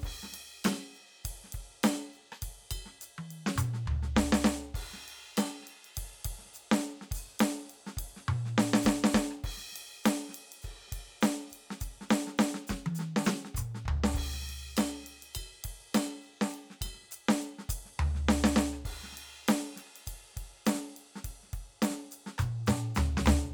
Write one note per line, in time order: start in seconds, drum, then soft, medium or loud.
0.01 kick medium
0.01 hi-hat pedal soft
0.05 crash medium
0.10 kick soft
0.24 snare soft
0.33 snare soft
0.33 ride medium
0.65 snare loud
0.65 hi-hat pedal medium
0.65 ride bell loud
0.74 snare soft
0.95 hi-hat pedal soft
0.95 ride soft
1.12 ride soft
1.25 kick soft
1.25 hi-hat pedal medium
1.25 ride loud
1.31 kick soft
1.34 kick soft
1.45 snare soft
1.49 snare soft
1.53 kick soft
1.53 snare soft
1.53 ride medium
1.64 kick soft
1.84 snare loud
1.84 hi-hat pedal medium
1.84 ride bell loud
1.92 snare soft
2.13 hi-hat pedal soft
2.13 ride soft
2.33 cross-stick medium
2.42 kick soft
2.42 hi-hat pedal medium
2.42 ride loud
2.49 kick soft
2.52 kick soft
2.62 snare soft
2.71 kick soft
2.71 ride bell loud
2.78 kick soft
2.82 kick soft
2.86 snare soft
3.02 hi-hat pedal medium
3.02 ride medium
3.19 high tom medium
3.31 ride medium
3.47 snare loud
3.57 kick soft
3.57 hi-hat pedal loud
3.57 mid tom loud
3.74 snare soft
3.87 kick soft
3.87 floor tom loud
3.92 kick soft
4.03 snare soft
4.16 kick soft
4.16 snare loud
4.33 snare loud
4.45 snare loud
4.75 kick medium
4.75 crash medium
4.82 kick soft
4.85 kick soft
4.94 snare soft
4.98 cross-stick soft
5.09 ride medium
5.38 snare loud
5.38 hi-hat pedal medium
5.38 ride bell loud
5.45 snare soft
5.64 cross-stick soft
5.68 cross-stick soft
5.68 ride medium
5.85 ride soft
5.95 kick soft
5.95 hi-hat pedal soft
5.95 ride loud
6.04 kick soft
6.25 kick medium
6.25 ride loud
6.33 kick soft
6.36 kick soft
6.36 snare soft
6.46 snare soft
6.55 hi-hat pedal medium
6.55 ride medium
6.72 snare loud
6.78 snare soft
6.78 hi-hat pedal soft
6.84 ride soft
7.02 snare soft
7.12 kick medium
7.12 hi-hat pedal medium
7.12 ride loud
7.19 kick soft
7.24 kick soft
7.40 snare loud
7.40 ride loud
7.47 cross-stick soft
7.70 ride medium
7.87 snare medium
7.98 kick soft
7.98 ride loud
8.04 kick soft
8.07 kick soft
8.17 snare soft
8.29 mid tom loud
8.46 snare soft
8.59 snare loud
8.74 snare loud
8.83 kick soft
8.83 snare loud
8.83 hi-hat pedal loud
9.05 snare loud
9.15 kick soft
9.15 snare loud
9.32 cross-stick medium
9.44 kick medium
9.44 crash loud
9.52 kick soft
9.55 kick soft
9.55 snare soft
9.73 snare soft
9.76 snare soft
9.76 ride loud
10.05 snare loud
10.05 hi-hat pedal medium
10.05 ride loud
10.12 cross-stick soft
10.30 snare soft
10.30 hi-hat pedal soft
10.35 snare soft
10.35 ride medium
10.53 ride medium
10.62 kick soft
10.62 hi-hat pedal soft
10.62 ride medium
10.89 snare soft
10.93 kick soft
10.93 ride medium
10.99 kick soft
11.03 kick soft
11.22 snare loud
11.22 hi-hat pedal medium
11.22 ride medium
11.33 snare soft
11.50 kick soft
11.50 hi-hat pedal soft
11.50 ride medium
11.71 snare medium
11.81 kick medium
11.81 hi-hat pedal medium
11.81 ride medium
11.88 kick soft
12.02 snare soft
12.10 snare loud
12.10 hi-hat pedal medium
12.28 snare soft
12.39 snare loud
12.39 hi-hat pedal medium
12.55 snare medium
12.68 kick soft
12.68 snare medium
12.68 hi-hat pedal medium
12.76 kick soft
12.80 kick soft
12.87 high tom loud
12.95 hi-hat pedal medium
13.00 snare medium
13.17 snare loud
13.25 snare loud
13.25 hi-hat pedal medium
13.45 snare soft
13.55 kick medium
13.55 hi-hat pedal loud
13.55 mid tom loud
13.65 kick soft
13.75 snare soft
13.86 kick soft
13.86 floor tom loud
13.93 kick soft
14.04 snare loud
14.15 kick medium
14.15 crash loud
14.23 kick soft
14.34 snare soft
14.43 snare soft
14.49 snare soft
14.49 ride medium
14.77 snare loud
14.77 hi-hat pedal medium
14.77 ride bell loud
15.03 snare soft
15.03 ride medium
15.12 snare soft
15.18 snare soft
15.23 snare soft
15.23 ride medium
15.34 kick soft
15.34 hi-hat pedal soft
15.34 ride bell loud
15.65 kick soft
15.65 ride loud
15.95 snare loud
15.95 hi-hat pedal medium
15.95 ride bell loud
16.07 snare soft
16.22 hi-hat pedal soft
16.22 ride soft
16.42 snare loud
16.50 hi-hat pedal medium
16.55 ride medium
16.71 snare soft
16.82 kick soft
16.82 snare soft
16.82 ride bell loud
16.88 kick soft
16.92 kick soft
16.92 snare soft
17.03 snare soft
17.12 hi-hat pedal loud
17.12 ride medium
17.29 snare loud
17.37 hi-hat pedal soft
17.43 ride soft
17.59 snare soft
17.70 kick medium
17.70 hi-hat pedal loud
17.70 ride loud
17.86 snare soft
18.00 floor tom loud
18.16 snare soft
18.29 snare loud
18.45 snare loud
18.57 snare loud
18.74 cross-stick soft
18.86 kick soft
18.86 crash medium
18.92 kick soft
18.95 kick soft
19.04 snare soft
19.13 snare soft
19.18 ride medium
19.48 snare loud
19.48 hi-hat pedal soft
19.48 ride loud
19.77 snare soft
19.77 ride medium
19.87 cross-stick soft
19.96 ride medium
20.07 kick soft
20.07 hi-hat pedal medium
20.07 ride loud
20.34 kick soft
20.34 snare soft
20.34 ride medium
20.46 kick soft
20.66 snare loud
20.66 hi-hat pedal medium
20.66 ride loud
20.75 snare soft
20.97 ride medium
21.16 snare soft
21.25 kick soft
21.25 ride medium
21.31 kick soft
21.44 snare soft
21.48 snare soft
21.54 kick soft
21.54 ride medium
21.61 kick soft
21.83 snare loud
21.83 hi-hat pedal medium
21.83 ride loud
21.91 snare soft
22.12 hi-hat pedal medium
22.12 ride medium
22.27 snare medium
22.39 kick soft
22.39 cross-stick medium
22.39 hi-hat pedal medium
22.39 mid tom loud
22.45 kick soft
22.67 snare loud
22.67 hi-hat pedal medium
22.67 mid tom loud
22.95 snare medium
22.95 hi-hat pedal medium
22.95 floor tom loud
23.18 snare loud
23.18 floor tom loud
23.26 snare loud
23.26 hi-hat pedal medium
23.26 floor tom loud